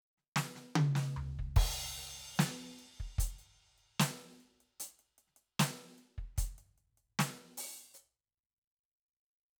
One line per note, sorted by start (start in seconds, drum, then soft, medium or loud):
0.18 snare soft
0.36 snare loud
0.55 snare soft
0.76 high tom loud
0.95 snare medium
1.16 floor tom medium
1.39 kick soft
1.56 kick medium
1.56 crash loud
2.35 snare loud
2.35 hi-hat pedal medium
2.40 closed hi-hat medium
2.59 closed hi-hat soft
2.79 closed hi-hat soft
2.99 kick soft
2.99 closed hi-hat soft
3.18 closed hi-hat loud
3.18 kick medium
3.38 closed hi-hat soft
3.78 closed hi-hat soft
4.00 closed hi-hat loud
4.00 snare loud
4.20 closed hi-hat soft
4.40 closed hi-hat soft
4.60 closed hi-hat soft
4.80 closed hi-hat loud
4.99 closed hi-hat soft
5.18 closed hi-hat soft
5.27 snare soft
5.36 closed hi-hat soft
5.59 closed hi-hat loud
5.59 snare loud
5.82 snare soft
5.98 snare soft
5.98 closed hi-hat soft
6.18 kick soft
6.18 closed hi-hat soft
6.36 closed hi-hat loud
6.36 kick medium
6.36 snare soft
6.58 closed hi-hat soft
6.78 closed hi-hat soft
6.97 closed hi-hat soft
7.19 closed hi-hat medium
7.19 snare loud
7.37 closed hi-hat soft
7.57 open hi-hat loud
7.94 hi-hat pedal medium